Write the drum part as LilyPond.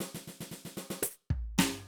\new DrumStaff \drummode { \time 4/4 \tempo 4 = 114 sn16 sn16 sn16 sn16 sn16 sn16 sn16 sn16 tommh8 bd8 <tomfh sn>4 | }